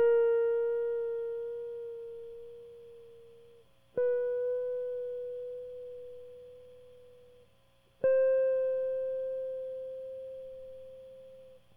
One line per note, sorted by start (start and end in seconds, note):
0.00 3.03 A#4
3.98 6.76 B4
8.04 11.57 C5